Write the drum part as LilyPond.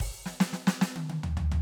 \new DrumStaff \drummode { \time 4/4 \tempo 4 = 144 \tuplet 3/2 { <bd hho>8 r8 sn8 sn8 sn8 sn8 sn8 tommh8 tommh8 tomfh8 tomfh8 tomfh8 } | }